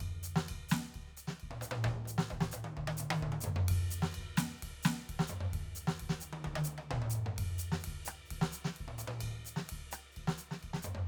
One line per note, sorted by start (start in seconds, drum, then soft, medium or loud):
0.01 kick soft
0.01 ride bell medium
0.10 kick soft
0.23 hi-hat pedal loud
0.28 ride soft
0.36 snare medium
0.49 kick soft
0.49 ride bell medium
0.69 snare loud
0.69 hi-hat pedal medium
0.95 kick soft
0.95 ride bell soft
1.07 snare soft
1.17 hi-hat pedal medium
1.17 ride soft
1.28 snare medium
1.40 kick soft
1.40 ride bell soft
1.51 mid tom medium
1.62 hi-hat pedal medium
1.62 mid tom medium
1.67 ride soft
1.72 mid tom loud
1.85 kick soft
1.85 mid tom loud
1.94 kick soft
2.06 hi-hat pedal medium
2.06 mid tom soft
2.19 snare medium
2.29 hi-hat pedal soft
2.29 mid tom medium
2.33 kick soft
2.39 kick soft
2.41 kick soft
2.41 snare medium
2.52 hi-hat pedal medium
2.52 mid tom medium
2.65 high tom medium
2.77 kick soft
2.77 mid tom medium
2.88 high tom medium
2.97 hi-hat pedal loud
2.97 mid tom medium
3.11 high tom loud
3.17 hi-hat pedal soft
3.22 kick soft
3.22 mid tom medium
3.30 kick soft
3.30 high tom medium
3.41 floor tom loud
3.41 hi-hat pedal loud
3.57 floor tom loud
3.67 kick soft
3.67 ride loud
3.67 floor tom soft
3.79 kick soft
3.91 hi-hat pedal loud
3.91 ride soft
4.03 snare medium
4.11 hi-hat pedal soft
4.11 ride bell medium
4.18 kick soft
4.37 snare medium
4.37 hi-hat pedal loud
4.58 hi-hat pedal soft
4.63 kick soft
4.63 ride medium
4.83 snare loud
4.83 hi-hat pedal medium
5.03 hi-hat pedal soft
5.10 kick soft
5.10 ride medium
5.20 snare medium
5.28 floor tom medium
5.28 hi-hat pedal medium
5.41 floor tom medium
5.54 kick medium
5.54 ride medium
5.75 hi-hat pedal medium
5.75 ride soft
5.88 snare medium
5.96 hi-hat pedal soft
5.96 ride medium
6.02 kick soft
6.10 snare medium
6.21 hi-hat pedal medium
6.21 high tom soft
6.33 high tom medium
6.45 kick soft
6.45 high tom medium
6.53 kick soft
6.53 high tom medium
6.64 hi-hat pedal loud
6.64 high tom soft
6.78 high tom medium
6.91 kick soft
6.91 mid tom loud
7.02 kick soft
7.02 mid tom medium
7.10 hi-hat pedal loud
7.16 floor tom medium
7.27 floor tom medium
7.37 kick soft
7.37 ride medium
7.37 floor tom soft
7.48 kick soft
7.59 hi-hat pedal loud
7.64 ride soft
7.72 snare medium
7.80 hi-hat pedal soft
7.85 kick soft
7.85 ride medium
7.94 kick soft
7.96 kick soft
8.06 cross-stick medium
8.06 hi-hat pedal loud
8.26 hi-hat pedal soft
8.31 kick soft
8.31 ride medium
8.42 snare medium
8.52 hi-hat pedal loud
8.52 ride soft
8.65 snare medium
8.74 hi-hat pedal soft
8.74 ride medium
8.81 kick soft
8.88 mid tom medium
8.99 hi-hat pedal medium
8.99 mid tom medium
9.08 mid tom medium
9.20 kick soft
9.20 hi-hat pedal soft
9.20 ride bell medium
9.45 hi-hat pedal medium
9.45 ride soft
9.57 snare medium
9.66 hi-hat pedal soft
9.66 ride medium
9.72 kick soft
9.92 cross-stick medium
9.92 hi-hat pedal medium
10.12 hi-hat pedal soft
10.17 kick soft
10.17 ride bell soft
10.28 snare medium
10.38 hi-hat pedal medium
10.38 ride soft
10.52 snare medium
10.59 hi-hat pedal soft
10.63 kick soft
10.63 ride bell soft
10.74 snare medium
10.83 floor tom medium
10.83 hi-hat pedal medium
10.95 floor tom medium